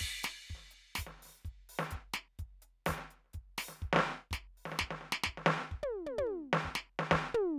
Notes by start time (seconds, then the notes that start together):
0.01 kick
0.24 open hi-hat, snare
0.47 kick, open hi-hat
0.55 snare
0.58 snare
0.71 open hi-hat
0.95 open hi-hat, kick, snare
1.07 snare
1.19 open hi-hat, snare
1.25 snare
1.29 snare
1.45 kick, closed hi-hat
1.69 open hi-hat
1.79 snare
1.91 closed hi-hat, kick
2.14 open hi-hat, snare
2.39 closed hi-hat, kick
2.62 open hi-hat
2.86 open hi-hat, kick, snare
2.98 snare
3.10 open hi-hat
3.18 snare
3.25 snare
3.33 closed hi-hat, kick
3.58 open hi-hat, snare
3.68 snare
3.82 kick
3.93 snare
3.96 snare
3.99 snare
4.30 closed hi-hat, kick, snare, hi-hat pedal
4.57 open hi-hat
4.65 snare
4.72 snare
4.79 kick, snare
4.91 snare
5.01 snare
5.12 snare
5.24 kick, snare, hi-hat pedal
5.37 snare
5.46 snare
5.58 snare
5.71 kick
5.83 high tom
6.06 high tom
6.18 kick, high tom
6.26 high tom
6.53 snare
6.61 kick, snare, hi-hat pedal
6.75 snare
6.99 snare
7.11 kick, snare, hi-hat pedal
7.34 mid tom